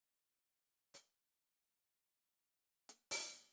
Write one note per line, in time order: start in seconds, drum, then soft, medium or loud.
0.94 hi-hat pedal medium
2.89 closed hi-hat medium
3.11 open hi-hat loud